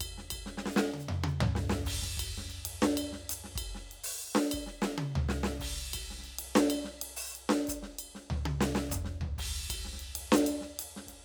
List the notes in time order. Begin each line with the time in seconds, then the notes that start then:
0.01 kick, ride bell
0.18 snare
0.31 kick, ride bell
0.46 snare
0.58 snare
0.66 snare
0.72 hi-hat pedal
0.77 snare
0.94 high tom
1.00 hi-hat pedal
1.09 mid tom
1.24 high tom
1.29 hi-hat pedal
1.41 floor tom
1.56 snare
1.70 snare
1.85 kick, hi-hat pedal, crash
1.95 kick
2.02 snare
2.18 kick, ride bell
2.38 snare
2.48 snare, ride
2.66 ride
2.83 snare
2.98 ride bell
3.13 snare
3.30 hi-hat pedal, ride
3.44 snare
3.56 kick, ride bell
3.62 kick
3.75 snare
3.92 ride
4.04 open hi-hat
4.23 ride
4.35 snare
4.52 kick, ride bell
4.67 snare
4.82 snare
4.98 high tom
5.16 floor tom
5.29 snare
5.44 snare
5.60 kick, crash
5.66 kick
5.76 cross-stick
5.94 kick, ride bell
6.11 snare
6.19 snare
6.24 snare, ride
6.30 snare
6.39 ride
6.56 snare
6.70 ride bell
6.85 snare
7.02 ride
7.17 open hi-hat
7.36 ride
7.50 snare
7.68 kick, hi-hat pedal, ride
7.83 snare
7.99 ride bell
8.15 snare
8.31 floor tom
8.46 high tom
8.61 snare
8.75 snare
8.90 kick, hi-hat pedal, mid tom
8.96 kick
9.05 snare
9.21 floor tom
9.38 kick, crash
9.70 kick, ride bell
9.85 snare
9.93 snare
10.00 ride
10.16 ride
10.32 snare, hi-hat pedal
10.47 ride bell
10.62 snare
10.80 hi-hat pedal, ride
10.97 snare
11.07 kick, snare, ride